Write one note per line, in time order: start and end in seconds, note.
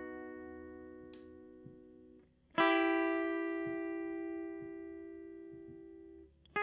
2.58 6.28 E4
2.58 6.28 G4
6.56 6.63 G#4